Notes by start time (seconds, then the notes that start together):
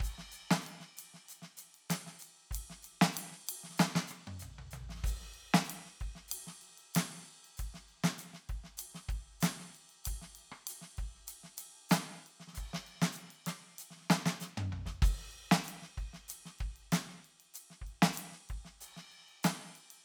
0.01 kick, hi-hat pedal, ride
0.18 snare
0.32 hi-hat pedal, ride
0.51 snare
0.62 hi-hat pedal
0.67 ride
0.80 snare
0.97 hi-hat pedal, ride
1.14 snare
1.29 hi-hat pedal, ride
1.42 snare
1.57 hi-hat pedal, ride
1.75 ride
1.90 snare, hi-hat pedal, ride
2.07 snare
2.19 hi-hat pedal, ride
2.51 kick, hi-hat pedal, ride
2.70 snare
2.83 hi-hat pedal, ride
3.02 snare
3.13 hi-hat pedal
3.17 ride
3.32 snare
3.47 hi-hat pedal, ride
3.64 snare
3.70 snare
3.74 snare, hi-hat pedal
3.80 snare
3.96 snare
4.08 cross-stick, hi-hat pedal
4.27 high tom
4.40 floor tom, hi-hat pedal
4.59 floor tom
4.71 floor tom, hi-hat pedal
4.90 snare
4.95 snare
4.99 snare
5.04 kick, snare, hi-hat pedal, crash
5.21 snare
5.34 ride
5.54 snare
5.65 hi-hat pedal
5.70 ride
5.86 snare
6.01 kick, ride
6.15 snare
6.28 hi-hat pedal, ride
6.47 snare
6.62 ride
6.78 ride
6.94 snare, hi-hat pedal, ride
7.14 snare
7.45 ride
7.57 kick, hi-hat pedal, ride
7.74 snare
7.89 ride
8.04 snare
8.18 hi-hat pedal, ride
8.34 snare
8.49 kick, ride
8.64 snare
8.78 hi-hat pedal, ride
8.95 snare
9.09 kick, ride
9.41 snare, hi-hat pedal, ride
9.60 snare
9.75 ride
9.90 ride
10.05 kick, hi-hat pedal, ride
10.22 snare
10.35 ride
10.52 cross-stick
10.67 hi-hat pedal, ride
10.82 snare
10.98 kick, ride
11.15 snare
11.27 hi-hat pedal, ride
11.44 snare
11.57 hi-hat pedal, ride
11.90 snare, hi-hat pedal, ride
12.11 snare
12.27 ride
12.40 snare
12.48 snare
12.54 snare, hi-hat pedal
12.58 kick, ride
12.74 snare
12.87 ride
13.02 snare
13.12 hi-hat pedal
13.17 ride
13.31 ride
13.47 snare, ride
13.79 hi-hat pedal, ride
13.91 snare
13.96 snare
14.01 snare
14.05 snare
14.10 snare
14.26 snare
14.40 snare, hi-hat pedal
14.58 high tom
14.73 floor tom
14.86 kick, snare
15.02 kick, hi-hat pedal, crash
15.20 snare
15.31 ride
15.52 snare
15.64 hi-hat pedal
15.69 ride
15.82 snare
15.98 kick, ride
16.14 snare
16.29 hi-hat pedal, ride
16.46 snare
16.59 kick, ride
16.76 ride
16.92 snare, hi-hat pedal, ride
17.09 snare
17.25 ride
17.40 ride
17.54 hi-hat pedal, ride
17.70 snare
17.82 kick
17.87 ride
18.02 snare
18.13 hi-hat pedal
18.18 ride
18.32 snare
18.49 kick, ride
18.65 snare
18.81 hi-hat pedal, ride
18.97 snare
19.12 ride
19.29 ride
19.43 snare, hi-hat pedal, ride
19.60 snare
19.76 ride
19.91 ride